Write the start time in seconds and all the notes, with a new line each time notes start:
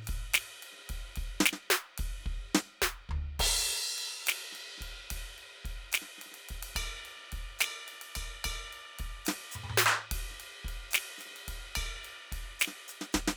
0.01 snare
0.03 snare, hi-hat pedal
0.08 kick, snare, ride
0.17 kick
0.35 snare, ride
0.63 ride
0.73 snare
0.80 snare
0.90 kick, ride
0.96 kick
1.17 kick, ride
1.24 kick
1.41 snare
1.47 snare
1.54 snare
1.71 snare
1.99 kick, ride
2.07 kick
2.21 snare
2.24 kick, snare
2.33 kick
2.37 kick
2.56 snare
2.83 kick, snare
3.10 kick, floor tom
3.40 kick, crash
3.47 kick
3.95 snare
3.99 ride
4.27 snare, hi-hat pedal, ride
4.53 snare, hi-hat pedal, ride
4.79 kick, snare
4.83 ride
5.11 kick, ride
5.18 kick
5.39 ride
5.66 kick, ride
5.93 snare, hi-hat pedal, ride
6.03 snare
6.19 snare, hi-hat pedal, ride
6.27 snare
6.32 snare, ride
6.38 snare
6.50 kick, ride
6.64 ride
6.76 kick, ride bell
6.82 kick
7.06 ride
7.18 snare
7.20 snare
7.33 kick, ride
7.39 kick
7.60 snare, hi-hat pedal, ride bell
7.87 hi-hat pedal, ride
7.94 snare
8.02 ride
8.16 kick, ride bell
8.45 kick, ride bell
8.52 kick
8.74 ride
9.00 kick, ride
9.07 kick
9.26 snare, hi-hat pedal, ride
9.52 hi-hat pedal, mid tom
9.64 mid tom
9.70 mid tom
9.78 snare, hi-hat pedal
9.87 percussion
10.12 kick, ride
10.24 kick
10.32 snare
10.41 ride
10.65 kick, ride
10.73 kick
10.92 snare, hi-hat pedal, ride
11.19 snare, hi-hat pedal, ride
11.27 snare
11.32 snare
11.36 snare, ride
11.46 kick, hi-hat pedal, ride
11.76 kick, ride bell
11.84 kick
12.04 hi-hat pedal, ride
12.33 kick, ride
12.60 snare, hi-hat pedal, ride
12.68 snare
12.89 hi-hat pedal, ride
13.02 snare
13.13 kick, snare, hi-hat pedal
13.28 snare